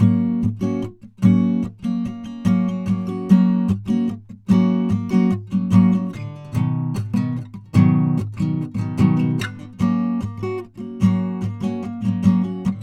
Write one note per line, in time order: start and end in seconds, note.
0.01 0.43 F#3
0.01 0.45 A#3
0.01 0.54 C#4
0.01 0.56 F#4
0.44 0.55 F#3
0.44 0.65 A#3
0.61 0.93 C#4
0.61 0.91 F#4
0.65 0.86 F#3
0.65 0.85 A#3
1.24 1.63 F#3
1.24 1.74 A#3
1.24 1.73 C#4
1.24 1.70 F#4
1.64 1.73 F#3
1.84 2.06 F#3
1.84 2.06 A#3
1.84 2.05 C#4
2.06 2.14 F3
2.06 2.26 A#3
2.06 2.25 C#4
2.06 2.19 F#4
2.26 2.47 A#3
2.26 2.44 C#4
2.46 2.87 F#3
2.46 2.69 A#3
2.46 2.87 C#4
2.46 2.92 F#4
2.70 2.87 A#3
2.87 3.30 F#3
2.87 3.11 A#3
2.87 3.07 C#4
3.08 3.31 A#3
3.08 3.31 C#4
3.08 3.32 F#4
3.31 3.76 F#3
3.31 3.70 A#3
3.31 3.77 C#4
3.31 3.71 F#4
3.87 4.11 A#3
3.87 4.10 C#4
3.87 4.15 F#4
4.50 4.91 F#3
4.50 4.90 A#3
4.50 4.97 C#4
4.50 4.93 F#4
4.91 5.15 F#3
4.91 5.13 A#3
4.91 5.10 F#4
5.10 5.38 A#3
5.10 5.39 C#4
5.10 5.38 F#4
5.15 5.41 F#3
5.52 5.74 F#3
5.52 5.73 A#3
5.52 5.74 C#4
5.73 5.96 F#3
5.73 5.94 A#3
5.73 5.93 C#4
5.73 6.11 F#4
5.93 6.15 F#3
5.93 6.13 A#3
5.93 6.16 C#4
6.15 6.37 D3
6.37 6.54 D3
6.55 7.02 B2
6.55 7.05 D#3
7.14 7.46 B2
7.14 7.46 D#3
7.14 7.45 B3
7.75 8.30 B2
7.75 8.21 D#3
7.75 8.22 F#3
7.75 8.20 B3
8.38 8.69 D#3
8.38 8.66 F#3
8.38 8.67 B3
8.44 8.70 B2
8.75 8.98 D#3
8.75 9.00 F#3
8.75 8.87 B3
8.80 8.99 B2
8.99 9.22 B2
8.99 9.20 D#3
8.99 9.18 F#3
8.99 9.17 B3
9.18 9.48 D#3
9.18 9.41 F#3
9.18 9.41 B3
9.22 9.47 B2
9.43 9.60 D3
9.61 9.70 D3
9.80 10.29 F#3
9.80 10.22 A#3
9.80 10.29 C#4
9.80 10.21 F4
10.22 10.43 A#3
10.39 10.64 C#4
10.44 10.70 A#3
10.44 10.69 F#4
10.77 11.02 A#3
10.77 11.02 C#4
10.77 11.05 F#4
11.02 11.53 F#3
11.02 11.43 A#3
11.02 11.41 C#4
11.02 11.47 F#4
11.43 11.62 A#3
11.43 11.53 C#4
11.62 11.79 F#3
11.62 11.83 A#3
11.62 11.84 C#4
11.62 11.89 F#4
11.84 12.02 A#3
11.84 12.01 C#4
12.02 12.24 F#3
12.02 12.25 A#3
12.02 12.26 C#4
12.24 12.44 F#3
12.24 12.43 A#3
12.24 12.44 C#4
12.24 12.40 F#4
12.44 12.73 F#3
12.44 12.64 A#3
12.44 12.68 C#4
12.44 12.68 F#4